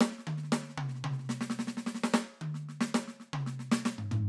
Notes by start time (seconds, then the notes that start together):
0.00 snare
0.11 snare
0.18 snare
0.27 high tom
0.37 snare
0.43 snare
0.52 snare
0.62 snare
0.69 snare
0.78 mid tom
0.89 snare
0.95 snare
1.04 mid tom
1.12 snare
1.18 snare
1.23 snare
1.29 snare
1.41 snare
1.50 snare
1.59 snare
1.67 snare
1.77 snare
1.86 snare
1.95 snare
2.03 snare
2.14 snare
2.41 closed hi-hat, high tom
2.54 snare
2.69 snare
2.81 snare
2.94 snare
3.08 snare
3.20 snare
3.33 mid tom
3.46 snare
3.59 snare
3.72 snare
3.85 snare
3.98 floor tom
4.11 floor tom